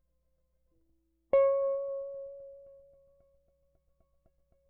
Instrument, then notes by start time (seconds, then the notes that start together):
electric guitar
1.33 C#5